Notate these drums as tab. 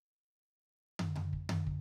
High tom  |------oo-o--|
Floor tom |------oo-o--|
Kick      |--------o-o-|